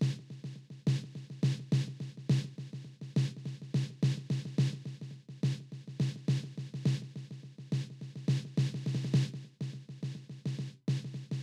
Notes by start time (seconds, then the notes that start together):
0.02 snare
0.20 snare
0.31 snare
0.45 snare
0.57 snare
0.71 snare
0.88 snare
1.05 snare
1.16 snare
1.31 snare
1.44 snare
1.60 snare
1.73 snare
1.89 snare
2.01 snare
2.18 snare
2.30 snare
2.45 snare
2.59 snare
2.74 snare
2.85 snare
3.02 snare
3.17 snare
3.38 snare
3.46 snare
3.63 snare
3.75 snare
3.91 snare
4.04 snare
4.18 snare
4.31 snare
4.46 snare
4.59 snare
4.74 snare
4.86 snare
5.02 snare
5.12 snare
5.30 snare
5.44 snare
5.61 snare
5.73 snare
5.88 snare
6.01 snare
6.17 snare
6.29 snare
6.44 snare
6.58 snare
6.75 snare
6.86 snare
7.03 snare
7.17 snare
7.32 snare
7.44 snare
7.59 snare
7.73 snare
7.91 snare
8.02 snare
8.16 snare
8.29 snare
8.46 snare
8.58 snare
8.75 snare
8.87 snare
8.95 snare
9.05 snare
9.15 snare
9.35 snare
9.45 snare
9.62 snare
9.74 snare
9.90 snare
10.04 snare
10.16 snare
10.30 snare
10.46 snare
10.60 snare
10.89 snare
11.05 snare
11.15 snare
11.32 snare